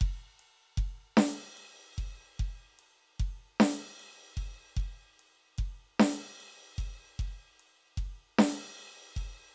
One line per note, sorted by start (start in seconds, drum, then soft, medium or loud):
0.01 kick loud
0.01 ride medium
0.40 ride medium
0.78 kick medium
0.78 ride medium
1.17 snare loud
1.17 crash medium
1.57 ride medium
1.98 kick medium
1.98 ride medium
2.40 kick medium
2.40 ride medium
2.79 ride medium
3.20 kick medium
3.20 ride medium
3.60 snare loud
3.60 crash medium
4.00 ride medium
4.37 kick medium
4.37 ride soft
4.77 kick medium
4.77 ride soft
5.20 ride medium
5.58 kick medium
5.58 ride medium
6.00 snare loud
6.00 crash medium
6.41 ride soft
6.78 kick medium
6.78 ride medium
7.19 kick medium
7.19 ride medium
7.60 ride medium
7.98 kick medium
7.98 ride medium
8.39 snare loud
8.39 crash medium
8.79 ride soft
9.17 kick medium
9.17 ride soft